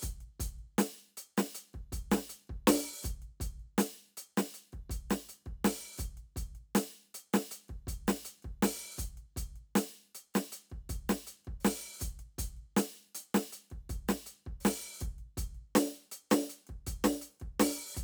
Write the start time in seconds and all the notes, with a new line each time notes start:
0.01 closed hi-hat, kick, hi-hat pedal
0.21 closed hi-hat
0.40 closed hi-hat, kick
0.59 closed hi-hat
0.78 closed hi-hat, snare
0.98 closed hi-hat
1.17 closed hi-hat
1.37 closed hi-hat, snare
1.55 closed hi-hat
1.73 kick, closed hi-hat
1.92 closed hi-hat, kick
2.11 snare, closed hi-hat
2.17 snare
2.30 closed hi-hat
2.47 kick, closed hi-hat
2.67 open hi-hat, snare
3.03 closed hi-hat, kick, hi-hat pedal
3.22 closed hi-hat
3.40 closed hi-hat, kick
3.60 closed hi-hat
3.78 closed hi-hat, snare
3.98 closed hi-hat
4.17 closed hi-hat
4.37 snare, closed hi-hat
4.54 closed hi-hat
4.73 kick, closed hi-hat
4.90 closed hi-hat, kick
5.10 snare, closed hi-hat
5.29 closed hi-hat
5.46 kick, closed hi-hat
5.65 open hi-hat, snare
5.98 closed hi-hat, kick, hi-hat pedal
6.17 closed hi-hat
6.36 closed hi-hat, kick
6.55 closed hi-hat
6.75 closed hi-hat, snare
6.96 closed hi-hat
7.14 closed hi-hat
7.33 snare, closed hi-hat
7.51 closed hi-hat
7.68 kick, closed hi-hat
7.87 closed hi-hat, kick
8.08 snare, closed hi-hat
8.25 closed hi-hat
8.43 kick, closed hi-hat
8.63 open hi-hat, snare
8.97 closed hi-hat, kick, hi-hat pedal
9.17 closed hi-hat
9.37 closed hi-hat, kick
9.56 closed hi-hat
9.75 closed hi-hat, snare
9.97 closed hi-hat
10.15 closed hi-hat
10.34 closed hi-hat, snare
10.52 closed hi-hat
10.70 kick, closed hi-hat
10.89 closed hi-hat, kick
11.09 closed hi-hat, snare
11.27 closed hi-hat
11.45 kick, closed hi-hat
11.60 hi-hat pedal
11.65 open hi-hat, snare
12.00 closed hi-hat, kick, hi-hat pedal
12.19 closed hi-hat
12.38 closed hi-hat, kick
12.57 closed hi-hat
12.77 closed hi-hat, snare
12.95 closed hi-hat
13.15 closed hi-hat
13.34 snare, closed hi-hat
13.53 closed hi-hat
13.70 kick, closed hi-hat
13.90 closed hi-hat, kick
14.08 closed hi-hat, snare
14.26 closed hi-hat
14.46 kick, closed hi-hat
14.60 hi-hat pedal
14.65 open hi-hat, snare
15.00 kick, closed hi-hat, hi-hat pedal
15.18 closed hi-hat
15.37 closed hi-hat, kick
15.55 closed hi-hat
15.75 closed hi-hat, snare
15.94 closed hi-hat
16.12 closed hi-hat
16.31 closed hi-hat, snare
16.49 closed hi-hat
16.67 kick, closed hi-hat
16.87 closed hi-hat, kick
17.04 snare, closed hi-hat
17.22 closed hi-hat
17.40 kick, closed hi-hat
17.60 open hi-hat, snare
17.95 closed hi-hat, kick, cross-stick, hi-hat pedal